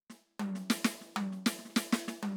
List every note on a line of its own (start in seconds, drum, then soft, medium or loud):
0.10 snare soft
0.40 high tom loud
0.55 snare soft
0.70 snare loud
0.84 snare loud
1.01 snare soft
1.16 high tom loud
1.32 snare soft
1.46 snare loud
1.58 snare soft
1.65 snare soft
1.70 snare soft
1.76 snare loud
1.93 snare loud
2.08 snare medium
2.23 high tom loud